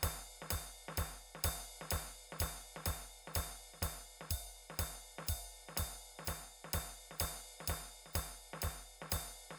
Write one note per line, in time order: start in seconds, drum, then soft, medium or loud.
0.01 kick soft
0.01 snare medium
0.01 hi-hat pedal soft
0.01 ride loud
0.42 snare soft
0.50 kick soft
0.50 snare soft
0.50 hi-hat pedal medium
0.50 ride loud
0.88 snare soft
0.97 kick soft
0.97 snare soft
0.97 ride medium
1.35 snare soft
1.44 kick soft
1.44 snare soft
1.44 hi-hat pedal medium
1.44 ride loud
1.81 snare soft
1.91 kick soft
1.91 snare soft
1.91 ride loud
2.32 snare soft
2.39 kick soft
2.39 snare soft
2.39 hi-hat pedal medium
2.39 ride loud
2.76 snare soft
2.86 kick soft
2.86 snare soft
2.86 ride loud
3.27 snare soft
3.34 kick soft
3.34 snare soft
3.34 hi-hat pedal loud
3.34 ride loud
3.74 snare soft
3.82 kick soft
3.82 snare soft
3.82 ride loud
4.21 snare soft
4.30 kick soft
4.30 hi-hat pedal loud
4.30 ride loud
4.70 snare soft
4.75 kick soft
4.75 hi-hat pedal soft
4.75 ride loud
4.79 snare soft
5.19 snare soft
5.27 kick soft
5.27 hi-hat pedal medium
5.27 ride loud
5.69 snare soft
5.77 kick soft
5.77 snare soft
5.77 ride loud
6.19 snare soft
6.25 kick soft
6.25 snare soft
6.25 hi-hat pedal medium
6.25 ride medium
6.64 snare soft
6.73 kick soft
6.73 snare soft
6.73 ride loud
7.11 snare soft
7.19 kick soft
7.19 snare soft
7.19 hi-hat pedal medium
7.19 ride loud
7.60 snare soft
7.67 kick soft
7.67 snare soft
7.67 ride loud
8.06 snare soft
8.13 kick soft
8.13 snare soft
8.13 hi-hat pedal medium
8.13 ride loud
8.53 snare soft
8.59 snare soft
8.59 hi-hat pedal soft
8.59 ride medium
8.64 kick soft
9.02 snare soft
9.10 kick soft
9.10 snare soft
9.10 hi-hat pedal medium
9.10 ride loud
9.51 snare soft